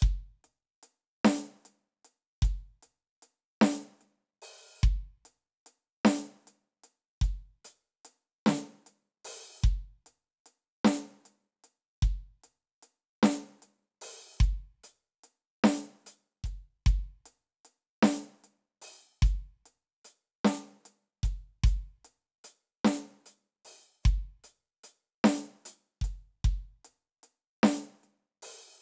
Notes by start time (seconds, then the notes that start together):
0.01 kick, hi-hat pedal
0.06 closed hi-hat
0.44 closed hi-hat
0.83 closed hi-hat
1.25 closed hi-hat, snare
1.65 closed hi-hat
2.05 closed hi-hat
2.42 kick, closed hi-hat
2.83 closed hi-hat
3.23 closed hi-hat
3.62 snare, closed hi-hat
4.01 closed hi-hat
4.42 open hi-hat
4.83 kick, closed hi-hat, hi-hat pedal
5.25 closed hi-hat
5.66 closed hi-hat
6.05 closed hi-hat, snare
6.47 closed hi-hat
6.84 closed hi-hat
7.21 kick, closed hi-hat
7.65 closed hi-hat
8.05 closed hi-hat
8.46 closed hi-hat, snare
8.48 snare
8.87 closed hi-hat
9.25 open hi-hat
9.62 kick, hi-hat pedal
9.66 closed hi-hat
10.06 closed hi-hat
10.46 closed hi-hat
10.85 snare, closed hi-hat
11.26 closed hi-hat
11.64 closed hi-hat
12.03 kick, closed hi-hat
12.44 closed hi-hat
12.83 closed hi-hat
13.23 closed hi-hat, snare
13.62 closed hi-hat
14.02 open hi-hat
14.39 kick, hi-hat pedal
14.43 closed hi-hat
14.84 closed hi-hat
15.24 closed hi-hat
15.64 snare, closed hi-hat
16.07 closed hi-hat
16.44 kick, closed hi-hat
16.86 kick, closed hi-hat
17.26 closed hi-hat
17.65 closed hi-hat
18.03 closed hi-hat, snare
18.44 closed hi-hat
18.82 open hi-hat
19.22 closed hi-hat, kick, hi-hat pedal
19.66 closed hi-hat
20.05 closed hi-hat
20.45 closed hi-hat, snare
20.86 closed hi-hat
21.23 kick, closed hi-hat
21.64 closed hi-hat, kick
22.05 closed hi-hat
22.44 closed hi-hat
22.85 snare, closed hi-hat
23.26 closed hi-hat
23.65 open hi-hat
24.04 kick, closed hi-hat, hi-hat pedal
24.44 closed hi-hat
24.84 closed hi-hat
25.24 closed hi-hat, snare
25.66 closed hi-hat
26.02 kick, closed hi-hat
26.45 kick, closed hi-hat
26.85 closed hi-hat
27.23 closed hi-hat
27.63 snare, closed hi-hat
28.04 closed hi-hat
28.43 open hi-hat